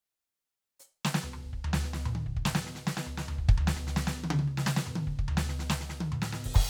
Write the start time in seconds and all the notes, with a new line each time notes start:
0.80 hi-hat pedal
1.05 snare
1.14 snare
1.23 floor tom
1.33 floor tom
1.44 kick
1.53 kick
1.64 floor tom
1.73 snare
1.84 snare
1.93 snare
2.06 mid tom
2.15 high tom
2.26 kick
2.37 kick
2.45 snare
2.55 snare
2.66 snare
2.75 snare
2.87 snare
3.06 floor tom
3.17 snare
3.28 floor tom
3.38 kick
3.49 kick, hi-hat pedal
3.58 floor tom
3.67 snare
3.76 snare
3.87 snare
3.96 snare
4.07 snare
4.18 high tom
4.24 high tom
4.30 high tom
4.39 high tom
4.48 cross-stick
4.57 snare
4.66 snare
4.76 snare
4.87 mid tom
4.95 high tom
5.07 kick
5.19 kick
5.28 floor tom
5.37 snare
5.49 snare
5.59 snare
5.70 snare
5.80 snare
5.89 snare
6.00 high tom
6.12 mid tom
6.22 snare
6.33 snare
6.44 kick, crash
6.54 kick, crash